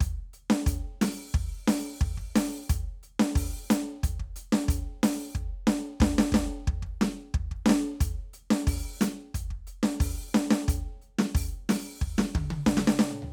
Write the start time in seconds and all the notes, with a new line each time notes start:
0.01 closed hi-hat, kick
0.34 closed hi-hat
0.50 snare
0.67 closed hi-hat, kick
1.02 open hi-hat, snare
1.34 kick
1.68 open hi-hat, snare
2.01 open hi-hat, kick
2.18 kick, cross-stick
2.22 crash, ride
2.36 open hi-hat, snare
2.67 closed hi-hat, kick, hi-hat pedal
3.03 closed hi-hat
3.20 snare
3.36 open hi-hat, kick
3.69 closed hi-hat, snare, hi-hat pedal
4.04 closed hi-hat, kick
4.20 kick
4.36 closed hi-hat
4.53 snare
4.69 open hi-hat, kick
5.04 open hi-hat, snare
5.35 kick, hi-hat pedal
5.68 snare
6.01 kick, snare
6.19 snare
6.33 kick, snare
6.68 kick
6.83 kick, snare
6.87 crash, high tom, ride
7.02 snare
7.34 kick
7.52 kick
7.56 snare, crash, ride
7.66 snare
7.70 snare
8.01 closed hi-hat, kick
8.34 closed hi-hat
8.51 snare
8.67 open hi-hat, kick
9.01 closed hi-hat, snare, hi-hat pedal
9.35 closed hi-hat, kick
9.51 kick
9.67 closed hi-hat
9.83 snare
10.01 open hi-hat, kick
10.35 snare, hi-hat pedal
10.51 snare
10.68 closed hi-hat, kick
11.02 closed hi-hat
11.19 snare
11.35 open hi-hat, kick
11.70 open hi-hat, snare
12.02 kick
12.19 snare
12.35 kick, high tom
12.51 high tom
12.67 kick, snare
12.78 snare
12.88 snare
12.99 snare
13.11 mid tom
13.23 floor tom